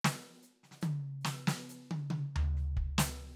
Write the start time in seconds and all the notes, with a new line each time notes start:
0.04 snare
0.43 hi-hat pedal
0.63 snare
0.71 snare
0.81 hi-hat pedal, high tom
1.21 snare, hi-hat pedal
1.47 snare
1.69 hi-hat pedal
1.91 high tom
2.10 high tom
2.36 floor tom
2.56 snare
2.77 kick
2.98 open hi-hat, snare